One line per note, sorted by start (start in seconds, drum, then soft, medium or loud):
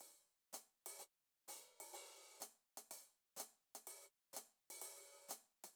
0.01 open hi-hat soft
0.53 closed hi-hat medium
0.53 hi-hat pedal medium
0.86 open hi-hat medium
0.99 open hi-hat medium
1.48 open hi-hat medium
1.48 hi-hat pedal soft
1.80 open hi-hat soft
1.93 open hi-hat medium
2.40 closed hi-hat medium
2.40 hi-hat pedal soft
2.78 closed hi-hat medium
2.91 open hi-hat medium
3.37 closed hi-hat medium
3.37 hi-hat pedal medium
3.75 closed hi-hat medium
3.87 open hi-hat medium
4.33 closed hi-hat medium
4.33 hi-hat pedal medium
4.71 open hi-hat medium
4.82 open hi-hat medium
5.29 closed hi-hat medium
5.29 hi-hat pedal medium
5.64 open hi-hat medium